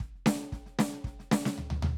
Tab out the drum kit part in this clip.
Snare     |ggogggogggoo----|
Floor tom |------------ooo-|
Kick      |o---g---o-------|